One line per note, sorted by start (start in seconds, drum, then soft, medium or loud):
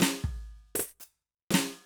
0.00 snare loud
0.00 hi-hat pedal medium
0.24 kick medium
0.75 high tom loud
0.79 high tom loud
1.00 hi-hat pedal loud
1.51 snare loud
1.54 snare loud
1.59 snare medium
1.63 snare soft
1.66 snare soft